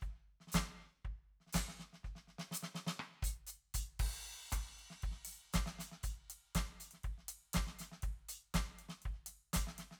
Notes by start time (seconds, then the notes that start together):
0.01 kick, hi-hat pedal
0.40 snare
0.47 snare
0.52 kick, snare, hi-hat pedal
0.62 snare
1.04 kick
1.40 snare
1.46 snare
1.52 kick, snare, hi-hat pedal
1.68 snare
1.79 snare
1.93 snare
2.03 kick, snare
2.15 snare
2.27 snare
2.38 snare
2.51 snare, hi-hat pedal
2.62 snare
2.75 snare
2.87 snare
2.99 cross-stick
3.22 open hi-hat, kick
3.47 hi-hat pedal
3.74 open hi-hat, kick
3.99 kick, crash
4.50 kick, cross-stick, closed hi-hat, hi-hat pedal
4.79 closed hi-hat
4.90 snare
5.02 kick, closed hi-hat
5.11 snare
5.25 snare, open hi-hat
5.53 kick, snare, closed hi-hat, hi-hat pedal
5.66 snare
5.79 closed hi-hat, snare
5.91 snare
6.03 closed hi-hat, kick
6.30 closed hi-hat
6.55 kick, snare, closed hi-hat
6.80 closed hi-hat
6.91 snare, closed hi-hat
7.03 kick, closed hi-hat
7.18 snare
7.28 closed hi-hat
7.53 kick, snare, closed hi-hat
7.67 snare
7.79 closed hi-hat, snare
7.92 snare
8.02 kick, closed hi-hat
8.29 closed hi-hat
8.54 kick, snare, closed hi-hat
8.78 closed hi-hat
8.89 snare
9.02 kick, closed hi-hat
9.13 snare
9.26 snare, closed hi-hat
9.53 closed hi-hat, kick, snare
9.67 snare
9.78 snare, closed hi-hat
9.91 snare